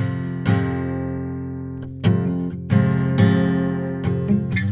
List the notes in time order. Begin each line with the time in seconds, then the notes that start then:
0.00 F2 C3 F3
0.27 F2
0.47 F2 C3 F3
1.84 F2
2.06 F2 C3 F3
2.27 F3
2.53 F2
2.71 F2 C3 F3 G#3
2.97 F2
3.20 C3 F3 G#3 C4
4.05 F2 C3 F3
4.34 F3
4.54 G2